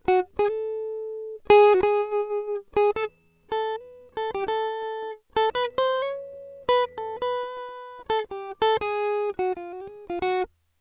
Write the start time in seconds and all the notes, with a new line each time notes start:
0.09 F#4
0.40 G#4
0.50 A4
1.51 G#4
1.74 F#4
1.85 G#4
2.78 G#4
2.97 A4
3.53 A4
3.77 B4
4.18 A4
4.36 G4
4.49 A4
5.37 A4
5.56 B4
5.79 C5
6.03 C#5
6.70 B4
6.98 A4
7.23 B4
8.11 A4
8.32 G4
8.63 A4
8.82 G#4
9.40 F#4
9.54 F4
9.74 F#4
9.88 G#4
10.11 F4
10.23 F#4